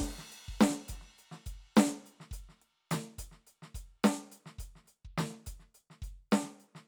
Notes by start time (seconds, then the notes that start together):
0.01 kick, crash
0.07 kick
0.18 snare
0.28 closed hi-hat, snare
0.48 kick
0.60 open hi-hat, snare
0.69 snare
0.88 closed hi-hat, kick, snare
1.01 snare
1.18 closed hi-hat
1.32 snare
1.46 closed hi-hat, kick
1.52 kick
1.76 open hi-hat, snare, hi-hat pedal
1.87 snare
2.06 closed hi-hat
2.20 snare
2.31 closed hi-hat, kick
2.49 snare
2.55 snare
2.58 snare, closed hi-hat
2.91 closed hi-hat, snare
3.18 closed hi-hat, kick
3.32 snare
3.47 closed hi-hat
3.62 snare
3.75 closed hi-hat, kick
4.04 closed hi-hat, snare
4.32 closed hi-hat
4.46 snare
4.59 closed hi-hat, kick
4.75 snare
4.84 closed hi-hat, snare
5.05 kick
5.18 closed hi-hat, snare
5.30 snare
5.46 closed hi-hat, kick
5.60 snare
5.75 closed hi-hat
5.90 snare
6.02 closed hi-hat, kick
6.08 kick
6.32 closed hi-hat, snare
6.43 snare
6.60 closed hi-hat
6.75 snare